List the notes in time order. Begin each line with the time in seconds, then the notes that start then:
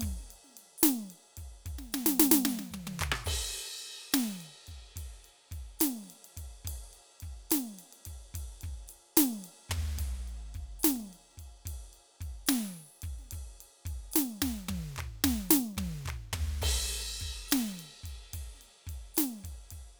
0.01 kick, ride
0.09 kick
0.19 snare
0.31 ride
0.44 snare
0.50 snare
0.57 ride
0.78 hi-hat pedal
0.83 snare, ride
1.10 ride
1.37 kick, ride
1.66 kick, ride
1.72 kick
1.79 snare
1.93 snare, hi-hat pedal
2.06 snare
2.20 snare, hi-hat pedal
2.32 snare
2.45 snare, hi-hat pedal
2.59 snare
2.71 kick, hi-hat pedal, high tom
2.87 high tom
2.99 kick, percussion, hi-hat pedal
3.12 cross-stick
3.25 kick, hi-hat pedal, crash
3.33 kick
3.78 snare, ride
4.13 snare, hi-hat pedal, ride
4.38 hi-hat pedal, ride
4.65 kick, snare, hi-hat pedal, ride
4.96 kick, ride
5.23 hi-hat pedal, ride
5.48 kick, snare
5.52 ride
5.80 snare, hi-hat pedal, ride
6.04 snare, hi-hat pedal
6.10 snare, ride
6.14 snare
6.25 ride
6.34 kick, hi-hat pedal, ride
6.65 kick, ride
6.92 hi-hat pedal, ride
7.20 kick, ride
7.50 snare, hi-hat pedal, ride
7.78 snare, hi-hat pedal, ride
7.84 snare
7.89 snare
7.92 snare, ride
7.96 snare
8.06 kick, ride
8.34 kick, ride
8.61 kick, snare, ride
8.69 kick
8.88 hi-hat pedal, ride
9.17 snare, ride
9.41 snare, hi-hat pedal, ride
9.49 snare
9.58 snare
9.62 snare
9.69 kick, snare, floor tom
9.98 kick, ride
10.04 kick
10.28 ride
10.55 kick, ride
10.80 hi-hat pedal
10.84 snare, ride
10.96 snare
11.13 ride
11.31 snare
11.38 kick, ride
11.66 kick, ride
11.93 ride
12.21 kick, ride
12.47 snare, hi-hat pedal, ride
13.02 kick, ride
13.19 snare
13.25 snare
13.31 kick, ride
13.61 ride
13.86 kick, ride
13.92 kick
14.12 hi-hat pedal, ride
14.16 snare
14.42 kick, snare
14.69 kick, high tom
14.75 kick
14.96 kick, percussion
15.04 kick
15.24 kick, snare
15.31 kick
15.49 snare, hi-hat pedal
15.75 kick, snare, high tom
15.83 kick, snare
15.90 snare
16.06 kick, percussion
16.11 kick
16.33 kick, floor tom
16.41 kick
16.59 kick, hi-hat pedal, crash
16.68 kick
17.16 snare, ride
17.21 kick
17.49 snare, hi-hat pedal, ride
17.76 snare, hi-hat pedal, ride
17.85 snare
17.98 snare
18.02 kick, hi-hat pedal, ride
18.34 kick, ride
18.39 kick
18.55 snare
18.60 snare, ride
18.87 kick, ride
19.15 snare, hi-hat pedal, ride
19.44 kick, ride
19.71 kick, ride